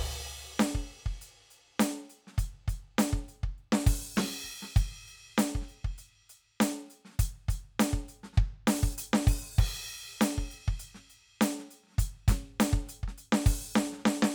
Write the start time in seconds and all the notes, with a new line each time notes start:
0.57 open hi-hat, kick, snare
0.62 hi-hat pedal
0.75 kick
0.91 closed hi-hat
1.06 kick
1.21 closed hi-hat
1.50 closed hi-hat
1.80 closed hi-hat, snare
2.10 closed hi-hat
2.27 snare
2.32 snare
2.38 closed hi-hat, kick
2.68 closed hi-hat, kick
2.98 closed hi-hat, snare
3.13 kick
3.28 closed hi-hat
3.43 kick
3.58 closed hi-hat
3.72 snare
3.87 open hi-hat, kick
4.16 snare, hi-hat pedal, crash
4.44 kick, closed hi-hat
4.62 snare
4.76 closed hi-hat, kick
5.08 closed hi-hat
5.38 closed hi-hat, snare
5.55 kick
5.61 snare
5.69 closed hi-hat
5.84 kick
5.98 closed hi-hat
6.29 closed hi-hat
6.60 closed hi-hat, snare
6.87 snare
6.89 closed hi-hat, snare
7.05 snare
7.08 snare
7.10 snare
7.19 closed hi-hat, kick
7.49 closed hi-hat, kick
7.80 closed hi-hat, snare
7.93 kick
8.08 closed hi-hat
8.23 snare
8.33 snare
8.38 kick, snare
8.67 open hi-hat, snare
8.83 kick
8.92 hi-hat pedal
8.98 closed hi-hat
9.13 snare
9.27 open hi-hat, kick
9.58 kick, hi-hat pedal, crash
9.88 closed hi-hat
10.21 closed hi-hat, snare
10.38 kick
10.51 closed hi-hat
10.68 kick
10.79 closed hi-hat
10.95 snare
11.10 closed hi-hat
11.41 closed hi-hat, snare
11.59 snare
11.67 closed hi-hat, snare
11.84 snare
11.87 snare
11.90 snare
11.92 snare
11.98 closed hi-hat, kick
12.28 closed hi-hat, kick, snare
12.60 closed hi-hat, snare
12.73 kick
12.86 closed hi-hat, snare
13.03 kick
13.08 snare
13.18 closed hi-hat
13.32 snare
13.46 open hi-hat, kick
13.75 snare, hi-hat pedal
13.92 snare
13.98 snare
14.03 snare
14.05 snare
14.22 snare